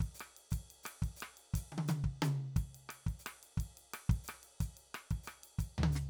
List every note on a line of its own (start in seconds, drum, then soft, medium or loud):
0.01 kick medium
0.01 ride soft
0.15 hi-hat pedal medium
0.20 cross-stick medium
0.20 ride soft
0.37 ride soft
0.51 kick medium
0.51 hi-hat pedal medium
0.51 ride soft
0.71 ride soft
0.84 cross-stick medium
0.84 hi-hat pedal soft
0.84 ride medium
1.03 kick medium
1.03 ride soft
1.17 hi-hat pedal medium
1.21 cross-stick medium
1.21 ride soft
1.38 ride soft
1.54 kick medium
1.54 hi-hat pedal medium
1.54 ride medium
1.73 high tom medium
1.79 high tom medium
1.88 hi-hat pedal medium
1.88 high tom medium
2.05 kick medium
2.23 hi-hat pedal medium
2.23 high tom loud
2.57 kick medium
2.57 hi-hat pedal soft
2.57 ride soft
2.75 ride soft
2.90 cross-stick medium
2.90 ride soft
3.07 kick medium
3.07 ride soft
3.20 hi-hat pedal soft
3.27 cross-stick medium
3.27 ride medium
3.44 ride soft
3.58 kick medium
3.58 hi-hat pedal soft
3.58 ride soft
3.78 ride soft
3.94 cross-stick medium
3.94 ride medium
4.10 kick medium
4.10 ride soft
4.24 hi-hat pedal soft
4.29 cross-stick medium
4.29 ride medium
4.44 ride soft
4.61 kick medium
4.61 hi-hat pedal medium
4.61 ride soft
4.78 ride soft
4.95 cross-stick medium
4.95 ride soft
5.11 kick medium
5.11 ride soft
5.24 hi-hat pedal soft
5.28 cross-stick medium
5.28 ride soft
5.44 ride soft
5.59 kick medium
5.59 hi-hat pedal soft
5.59 ride soft
5.79 floor tom loud
5.84 high tom loud
5.93 snare medium
5.93 hi-hat pedal medium